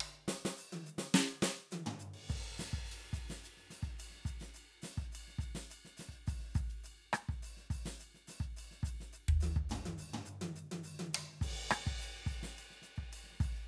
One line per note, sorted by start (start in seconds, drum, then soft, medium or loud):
0.01 hi-hat pedal medium
0.01 high tom loud
0.28 snare medium
0.28 hi-hat pedal medium
0.46 snare medium
0.57 hi-hat pedal medium
0.73 open hi-hat soft
0.73 high tom loud
0.87 hi-hat pedal medium
0.99 snare medium
1.14 snare loud
1.14 hi-hat pedal medium
1.42 snare loud
1.42 hi-hat pedal medium
1.72 closed hi-hat soft
1.72 hi-hat pedal medium
1.72 high tom loud
1.87 floor tom loud
2.00 hi-hat pedal medium
2.14 ride medium
2.29 kick soft
2.29 hi-hat pedal medium
2.29 crash medium
2.58 snare medium
2.58 hi-hat pedal medium
2.74 kick soft
2.74 snare soft
2.86 hi-hat pedal medium
2.92 ride medium
3.03 snare soft
3.14 kick soft
3.14 hi-hat pedal medium
3.14 ride soft
3.29 snare medium
3.29 ride soft
3.44 hi-hat pedal medium
3.44 ride medium
3.58 snare soft
3.71 snare soft
3.71 hi-hat pedal medium
3.71 ride soft
3.83 kick soft
3.83 ride soft
3.99 hi-hat pedal medium
3.99 ride bell medium
4.11 snare soft
4.15 snare soft
4.21 snare soft
4.26 kick soft
4.26 hi-hat pedal medium
4.26 ride soft
4.40 snare soft
4.40 ride soft
4.54 hi-hat pedal medium
4.54 ride bell medium
4.82 snare medium
4.82 hi-hat pedal medium
4.82 ride soft
4.98 kick soft
4.98 snare soft
5.13 hi-hat pedal medium
5.13 ride bell medium
5.28 snare soft
5.39 kick soft
5.39 hi-hat pedal medium
5.39 ride soft
5.55 snare medium
5.55 ride soft
5.71 hi-hat pedal medium
5.71 ride bell medium
5.85 snare soft
5.97 snare soft
5.97 hi-hat pedal medium
5.97 ride soft
6.09 kick soft
6.09 ride soft
6.27 kick medium
6.27 hi-hat pedal medium
6.27 ride soft
6.40 snare soft
6.44 snare soft
6.49 snare soft
6.51 snare soft
6.55 kick medium
6.55 hi-hat pedal medium
6.55 ride soft
6.70 ride soft
6.84 hi-hat pedal medium
6.84 ride bell medium
7.14 cross-stick medium
7.14 hi-hat pedal medium
7.14 ride soft
7.29 kick soft
7.29 snare soft
7.43 hi-hat pedal medium
7.43 ride bell soft
7.58 snare soft
7.71 kick soft
7.71 hi-hat pedal medium
7.71 ride soft
7.85 snare medium
7.85 ride soft
8.00 hi-hat pedal medium
8.00 ride bell medium
8.15 snare soft
8.28 snare soft
8.28 hi-hat pedal medium
8.28 ride soft
8.41 kick soft
8.41 ride soft
8.57 hi-hat pedal medium
8.57 ride bell medium
8.72 snare soft
8.84 kick medium
8.84 hi-hat pedal medium
8.84 ride medium
9.01 snare soft
9.13 hi-hat pedal medium
9.29 mid tom loud
9.41 hi-hat pedal medium
9.41 high tom loud
9.57 kick medium
9.70 floor tom loud
9.70 hi-hat pedal medium
9.86 high tom loud
9.99 hi-hat pedal medium
10.14 floor tom loud
10.26 hi-hat pedal medium
10.42 high tom loud
10.56 hi-hat pedal medium
10.72 high tom loud
10.84 hi-hat pedal medium
11.00 high tom loud
11.14 hi-hat pedal medium
11.14 high tom loud
11.42 kick medium
11.42 hi-hat pedal medium
11.42 ride loud
11.70 cross-stick medium
11.70 hi-hat pedal medium
11.86 kick medium
11.86 snare soft
11.99 hi-hat pedal medium
12.03 ride medium
12.16 snare soft
12.27 kick medium
12.27 hi-hat pedal medium
12.27 ride soft
12.42 snare medium
12.42 ride soft
12.57 hi-hat pedal soft
12.57 ride bell medium
12.71 snare soft
12.83 snare soft
12.83 hi-hat pedal medium
12.83 ride soft
12.96 kick soft
12.96 ride soft
13.13 hi-hat pedal medium
13.13 ride bell medium
13.25 snare soft
13.30 snare soft
13.33 snare soft
13.37 snare soft
13.41 kick medium
13.41 hi-hat pedal medium
13.41 ride soft
13.57 ride soft